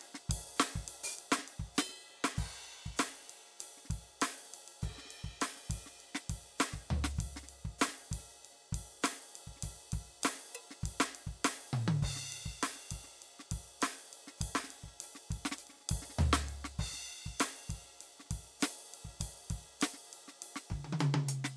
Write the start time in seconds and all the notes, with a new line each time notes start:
0.01 ride
0.14 snare
0.29 kick, ride
0.36 kick
0.41 kick
0.56 snare, hi-hat pedal, ride
0.75 kick
0.88 ride
1.03 open hi-hat
1.19 ride
1.32 snare
1.38 snare
1.48 ride
1.59 kick
1.75 snare, hi-hat pedal, ride bell
1.89 snare
2.06 hi-hat pedal
2.10 ride
2.24 snare
2.35 kick, snare, hi-hat pedal
2.39 crash
2.45 kick
2.49 kick
2.86 kick
2.96 snare, hi-hat pedal, ride
3.22 snare
3.29 ride
3.46 snare
3.60 hi-hat pedal, ride
3.77 snare
3.85 snare
3.90 kick, ride
3.98 kick
4.21 snare, hi-hat pedal, ride
4.36 snare
4.45 snare
4.54 ride
4.68 ride
4.82 kick, hi-hat pedal, ride
4.89 kick
4.98 snare
5.05 snare
5.11 ride
5.24 kick
5.41 snare, hi-hat pedal, ride
5.56 snare
5.70 kick, ride
5.75 kick
5.86 snare
5.98 hi-hat pedal, ride
6.15 snare
6.29 kick, ride
6.36 kick
6.58 snare, hi-hat pedal, ride
6.72 kick, snare
6.88 floor tom, hi-hat pedal
7.04 snare
7.16 kick, hi-hat pedal
7.20 ride
7.26 kick
7.36 snare
7.43 snare
7.49 ride
7.65 kick
7.79 snare, hi-hat pedal, ride
7.88 snare
8.11 kick, ride
8.18 kick, snare
8.28 snare
8.35 snare
8.41 hi-hat pedal, ride
8.52 snare
8.54 snare
8.72 kick, ride
8.79 kick
9.02 snare, hi-hat pedal, ride
9.12 snare
9.35 ride
9.47 kick
9.56 snare
9.61 kick, snare, hi-hat pedal, ride
9.65 snare
9.74 kick
9.92 kick, ride
10.05 kick
10.22 snare, hi-hat pedal, ride
10.35 snare
10.55 percussion
10.71 snare
10.81 kick, hi-hat pedal
10.86 kick, ride
11.00 snare
11.15 ride
11.27 kick
11.44 snare, hi-hat pedal, ride
11.55 snare
11.73 mid tom
11.88 high tom
11.96 hi-hat pedal
12.02 kick, crash
12.08 kick
12.16 snare
12.23 snare
12.29 snare, ride
12.46 kick
12.63 snare, hi-hat pedal, ride
12.76 snare
12.91 kick, ride
13.04 snare
13.22 hi-hat pedal, ride
13.39 snare
13.51 kick, ride
13.58 kick
13.80 snare, hi-hat pedal, ride
14.13 ride
14.27 snare
14.38 kick, hi-hat pedal, ride
14.47 kick
14.50 kick
14.55 snare
14.60 cross-stick
14.64 snare
14.69 snare, ride
14.73 snare
14.77 snare
14.81 kick, snare
14.87 snare
15.00 hi-hat pedal, ride
15.15 snare
15.30 kick, ride
15.37 kick
15.45 snare
15.51 snare
15.58 hi-hat pedal, ride
15.67 snare, ride
15.73 snare
15.76 snare
15.80 snare
15.86 snare, ride
15.91 kick
15.99 kick, snare
16.04 kick
16.09 snare
16.18 floor tom, hi-hat pedal
16.33 snare
16.48 ride
16.64 snare
16.77 kick, hi-hat pedal, crash
16.91 kick, snare
16.98 snare
17.00 snare
17.26 kick
17.39 snare, hi-hat pedal, ride
17.69 kick, ride
17.84 snare
18.00 hi-hat pedal, ride
18.20 snare
18.25 snare
18.31 kick, ride
18.37 kick
18.60 snare, hi-hat pedal, ride
18.94 ride
19.05 kick, snare
19.20 kick, hi-hat pedal, ride
19.50 kick, ride
19.61 kick
19.80 snare, hi-hat pedal, ride
19.93 snare
20.13 ride
20.28 snare
20.42 hi-hat pedal, ride
20.56 snare
20.70 kick, high tom
20.78 kick
20.84 high tom
20.93 high tom
20.99 hi-hat pedal, high tom
21.14 high tom
21.29 closed hi-hat
21.44 snare